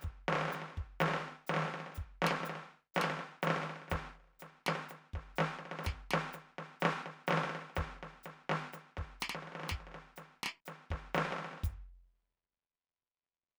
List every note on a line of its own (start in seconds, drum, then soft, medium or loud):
0.01 kick soft
0.01 snare soft
0.01 hi-hat pedal medium
0.28 snare medium
0.33 snare medium
0.35 snare medium
0.38 snare medium
0.41 snare medium
0.45 snare soft
0.48 snare soft
0.50 snare soft
0.50 hi-hat pedal medium
0.55 snare soft
0.60 snare soft
0.62 snare soft
0.68 snare soft
0.70 snare soft
0.73 kick soft
0.73 snare soft
0.78 snare soft
1.00 snare medium
1.00 hi-hat pedal medium
1.06 snare medium
1.08 snare medium
1.11 snare soft
1.14 snare medium
1.16 snare soft
1.20 snare soft
1.28 snare soft
1.46 snare medium
1.46 hi-hat pedal medium
1.54 snare medium
1.56 snare medium
1.59 snare soft
1.62 snare medium
1.65 snare soft
1.68 snare soft
1.74 snare soft
1.79 snare soft
1.86 snare soft
1.92 snare soft
1.92 hi-hat pedal medium
1.96 kick soft
1.96 snare soft
2.22 snare medium
2.24 snare medium
2.27 snare medium
2.31 snare medium
2.36 snare soft
2.40 snare soft
2.43 snare soft
2.43 hi-hat pedal medium
2.49 snare soft
2.55 snare soft
2.59 snare soft
2.63 snare soft
2.94 snare medium
2.94 hi-hat pedal medium
2.98 snare medium
3.01 snare medium
3.04 snare medium
3.10 snare medium
3.17 snare soft
3.19 snare soft
3.42 snare medium
3.42 hi-hat pedal medium
3.47 snare medium
3.50 snare medium
3.56 snare medium
3.62 snare soft
3.69 snare soft
3.76 snare soft
3.82 snare soft
3.88 snare soft
3.88 hi-hat pedal medium
3.91 kick soft
3.91 snare medium
4.05 snare soft
4.11 snare soft
4.15 snare soft
4.20 snare soft
4.24 snare soft
4.27 snare soft
4.33 snare soft
4.39 snare soft
4.39 hi-hat pedal medium
4.66 snare medium
4.68 snare medium
4.75 snare soft
4.89 snare soft
4.89 hi-hat pedal medium
4.98 snare soft
5.04 snare soft
5.13 kick soft
5.13 snare soft
5.35 snare medium
5.35 hi-hat pedal medium
5.40 snare medium
5.59 snare soft
5.65 snare soft
5.71 snare soft
5.79 snare soft
5.83 snare soft
5.83 hi-hat pedal medium
5.86 kick soft
5.86 snare medium
5.92 kick soft
6.10 snare medium
6.13 snare loud
6.30 snare soft
6.30 hi-hat pedal medium
6.34 snare soft
6.58 snare soft
6.80 snare medium
6.80 hi-hat pedal medium
6.85 snare loud
7.06 snare soft
7.27 snare medium
7.27 hi-hat pedal medium
7.31 snare medium
7.32 snare medium
7.37 snare medium
7.43 snare medium
7.49 snare soft
7.55 snare soft
7.61 snare soft
7.70 snare soft
7.75 kick soft
7.75 snare medium
7.75 hi-hat pedal medium
7.88 snare soft
7.96 snare soft
8.03 snare soft
8.13 snare soft
8.17 snare soft
8.23 snare soft
8.23 hi-hat pedal medium
8.49 snare medium
8.51 snare medium
8.73 snare soft
8.73 hi-hat pedal medium
8.84 snare soft
8.97 kick soft
8.97 snare soft
9.20 snare medium
9.20 hi-hat pedal medium
9.29 snare medium
9.35 snare soft
9.42 snare soft
9.47 snare soft
9.52 snare soft
9.55 snare soft
9.60 snare soft
9.63 snare soft
9.67 snare soft
9.67 hi-hat pedal medium
9.69 kick soft
9.69 snare medium
9.80 snare soft
9.87 snare soft
9.92 snare soft
9.94 snare soft
10.16 snare soft
10.16 hi-hat pedal medium
10.43 snare medium
10.46 snare medium
10.65 snare soft
10.65 hi-hat pedal medium
10.80 snare soft
10.84 snare soft
10.90 kick soft
10.90 snare soft
11.14 snare medium
11.14 hi-hat pedal medium
11.18 snare medium
11.25 snare soft
11.31 snare soft
11.31 snare medium
11.36 snare soft
11.38 snare soft
11.44 snare soft
11.51 snare soft
11.53 snare soft
11.58 snare soft
11.62 kick medium
11.62 snare soft
11.62 hi-hat pedal loud
11.67 kick soft
11.67 snare soft
11.73 kick soft